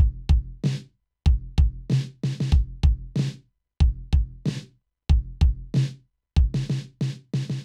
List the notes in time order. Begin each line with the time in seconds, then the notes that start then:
0.01 kick
0.32 kick
0.66 snare
0.68 snare
1.28 kick
1.60 kick
1.92 snare
1.95 snare
2.26 snare
2.43 snare
2.55 kick
2.86 kick
3.18 snare
3.22 snare
3.83 kick
4.15 kick
4.48 snare
4.51 snare
5.12 kick
5.44 kick
5.77 snare
5.79 snare
6.39 kick
6.57 snare
6.72 snare
7.03 snare
7.36 snare
7.52 snare